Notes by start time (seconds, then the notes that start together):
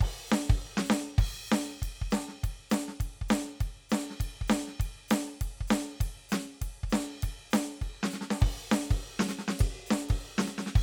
0.01 kick, crash
0.28 hi-hat pedal
0.32 snare
0.50 kick, crash
0.77 snare
0.86 hi-hat pedal
0.90 snare
1.18 kick, crash
1.47 hi-hat pedal
1.52 snare, ride
1.70 snare
1.82 kick, ride
2.02 kick
2.11 snare, hi-hat pedal, ride
2.29 snare
2.44 kick, ride
2.70 snare, hi-hat pedal, ride
2.88 snare
3.00 kick, ride
3.22 kick
3.29 snare, hi-hat pedal, ride
3.45 snare
3.61 kick, ride
3.90 snare, hi-hat pedal, ride
4.11 snare
4.20 kick, ride
4.41 kick
4.48 snare, hi-hat pedal, ride
4.68 snare
4.80 kick, ride
5.08 snare, hi-hat pedal, ride
5.28 cross-stick
5.41 kick, ride
5.61 kick
5.68 snare, hi-hat pedal, ride
6.01 kick, ride
6.29 snare, hi-hat pedal, ride
6.62 kick, ride
6.84 kick
6.90 snare, hi-hat pedal, ride
7.23 kick, ride
7.51 snare, hi-hat pedal, ride
7.82 kick, ride
8.03 snare
8.11 snare, hi-hat pedal
8.21 snare
8.31 snare
8.41 kick, crash
8.71 snare, hi-hat pedal
8.91 kick, crash
9.20 snare
9.29 snare, hi-hat pedal
9.39 snare
9.48 snare
9.60 kick, crash
9.87 hi-hat pedal
9.91 snare
10.09 kick, crash
10.38 snare
10.46 snare, hi-hat pedal
10.58 snare
10.67 snare
10.76 kick, crash